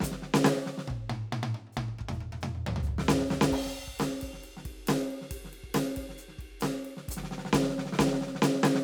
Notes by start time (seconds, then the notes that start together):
0.01 kick, snare, hi-hat pedal
0.10 kick, snare
0.23 snare
0.34 snare
0.45 snare
0.57 snare
0.67 snare
0.78 snare
0.88 kick, high tom
0.98 kick
1.10 high tom
1.33 high tom
1.44 high tom
1.55 high tom
1.67 high tom
1.73 hi-hat pedal
1.77 kick, high tom
1.89 high tom
1.99 kick, mid tom
2.13 hi-hat pedal
2.21 mid tom
2.33 mid tom
2.41 hi-hat pedal, mid tom
2.55 mid tom
2.67 floor tom
2.77 kick, floor tom
2.83 hi-hat pedal
2.87 floor tom
2.99 snare
3.04 hi-hat pedal
3.09 snare
3.20 snare
3.28 snare, hi-hat pedal
3.42 snare
3.52 kick, hi-hat pedal, crash
3.60 kick
3.65 kick, snare
3.88 kick
3.93 kick
4.00 snare, hi-hat pedal, ride
4.22 kick, ride
4.30 kick, snare
4.43 hi-hat pedal, ride
4.57 snare
4.66 kick, ride
4.72 kick
4.87 snare, hi-hat pedal, ride
5.11 ride
5.22 snare
5.31 kick, hi-hat pedal, ride
5.38 kick
5.42 kick, snare
5.54 ride
5.64 kick
5.70 kick
5.75 snare, hi-hat pedal, ride
5.97 kick, ride
6.05 kick
6.09 snare
6.18 hi-hat pedal, ride
6.29 snare
6.39 kick, ride
6.45 kick
6.61 snare, hi-hat pedal, ride
6.85 ride
6.97 snare
7.09 kick, hi-hat pedal, ride
7.16 kick, snare
7.24 snare
7.32 snare
7.39 snare
7.46 snare
7.53 kick, snare
7.63 snare
7.70 snare
7.79 snare
7.86 snare
7.93 snare
8.00 kick, snare
8.08 snare
8.14 snare
8.22 snare
8.27 snare
8.35 snare
8.43 snare
8.55 snare
8.64 snare
8.75 snare